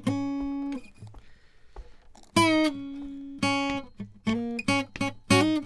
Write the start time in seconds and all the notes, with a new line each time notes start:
0.08 C#4
2.38 D#4
2.66 C#4
3.44 C#4
4.28 A#3
4.69 C#4
5.02 C#4
5.32 C#4 F#4
5.42 D#4